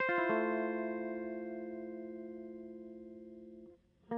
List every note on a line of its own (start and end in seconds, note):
0.00 3.75 C5
0.09 3.77 F4
0.18 3.77 E4
0.30 3.71 A3
4.12 4.17 A#3